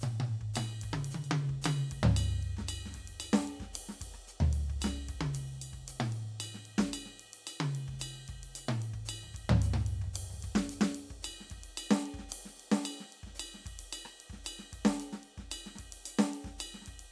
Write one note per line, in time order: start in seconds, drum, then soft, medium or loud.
0.01 hi-hat pedal medium
0.01 mid tom loud
0.20 mid tom loud
0.41 kick soft
0.54 hi-hat pedal medium
0.54 mid tom loud
0.54 ride bell loud
0.82 kick soft
0.82 ride medium
0.89 kick soft
0.94 high tom loud
1.05 ride medium
1.11 hi-hat pedal medium
1.11 high tom medium
1.24 ride bell soft
1.31 high tom loud
1.49 kick soft
1.62 hi-hat pedal medium
1.62 ride bell loud
1.66 high tom loud
1.92 kick soft
1.92 ride medium
2.03 floor tom loud
2.17 hi-hat pedal medium
2.17 ride bell loud
2.43 ride soft
2.57 kick soft
2.57 snare soft
2.68 hi-hat pedal medium
2.68 ride bell loud
2.86 snare soft
2.91 kick soft
2.91 snare soft
2.91 ride medium
2.96 snare soft
3.00 snare soft
3.04 snare soft
3.04 ride medium
3.08 snare soft
3.20 hi-hat pedal medium
3.20 ride bell loud
3.33 snare loud
3.48 ride medium
3.60 kick soft
3.60 snare soft
3.74 hi-hat pedal medium
3.74 ride loud
3.89 snare soft
4.01 kick soft
4.01 ride medium
4.14 cross-stick soft
4.28 hi-hat pedal medium
4.41 floor tom loud
4.53 ride medium
4.70 kick soft
4.81 snare medium
4.81 hi-hat pedal medium
4.81 ride bell loud
5.09 kick soft
5.09 ride medium
5.21 high tom loud
5.34 hi-hat pedal medium
5.34 ride medium
5.62 ride bell medium
5.73 kick soft
5.88 hi-hat pedal medium
5.88 ride medium
6.00 mid tom loud
6.13 ride soft
6.40 hi-hat pedal medium
6.40 ride bell loud
6.55 snare soft
6.66 ride soft
6.78 kick soft
6.78 snare loud
6.93 hi-hat pedal medium
6.93 ride bell loud
7.06 snare soft
7.20 ride medium
7.34 ride medium
7.47 hi-hat pedal medium
7.47 ride bell loud
7.61 high tom loud
7.75 ride medium
7.88 kick soft
7.93 snare soft
7.99 hi-hat pedal medium
7.99 ride bell loud
8.28 kick soft
8.28 ride soft
8.44 ride medium
8.56 hi-hat pedal medium
8.56 ride bell medium
8.69 mid tom loud
8.82 ride medium
8.94 kick soft
9.06 hi-hat pedal medium
9.06 ride bell loud
9.24 floor tom soft
9.35 kick soft
9.35 ride medium
9.50 floor tom loud
9.62 hi-hat pedal medium
9.62 ride medium
9.74 mid tom loud
9.87 ride medium
10.02 kick soft
10.02 floor tom soft
10.14 hi-hat pedal medium
10.14 ride loud
10.30 floor tom soft
10.43 kick soft
10.43 ride medium
10.50 kick soft
10.56 snare loud
10.70 hi-hat pedal medium
10.70 ride medium
10.81 snare loud
10.95 ride medium
11.11 kick soft
11.23 hi-hat pedal medium
11.23 ride bell loud
11.41 snare soft
11.50 kick soft
11.50 snare soft
11.50 ride medium
11.57 snare soft
11.64 ride medium
11.77 hi-hat pedal medium
11.77 ride bell loud
11.91 snare loud
12.06 ride soft
12.14 kick soft
12.19 snare soft
12.29 hi-hat pedal medium
12.29 ride loud
12.46 snare soft
12.60 ride medium
12.72 snare medium
12.82 hi-hat pedal medium
12.82 ride bell loud
13.01 snare soft
13.13 ride soft
13.23 kick soft
13.23 snare soft
13.35 hi-hat pedal medium
13.40 ride bell loud
13.55 snare soft
13.60 snare soft
13.66 kick soft
13.66 snare soft
13.66 ride medium
13.71 snare soft
13.79 ride medium
13.93 hi-hat pedal medium
13.93 ride bell loud
14.05 cross-stick medium
14.21 ride medium
14.30 kick soft
14.30 snare soft
14.45 hi-hat pedal medium
14.45 ride bell loud
14.59 snare soft
14.73 kick soft
14.73 ride medium
14.85 snare loud
15.00 hi-hat pedal medium
15.00 ride medium
15.13 snare soft
15.24 ride soft
15.38 kick soft
15.38 snare soft
15.51 hi-hat pedal medium
15.51 ride bell loud
15.66 snare soft
15.76 kick soft
15.76 snare soft
15.76 ride medium
15.93 ride medium
16.06 hi-hat pedal medium
16.06 ride bell medium
16.19 snare loud
16.34 ride medium
16.45 kick soft
16.45 snare soft
16.59 hi-hat pedal medium
16.59 ride bell loud
16.74 snare soft
16.82 snare soft
16.86 kick soft
16.86 snare soft
16.86 ride medium
17.00 ride medium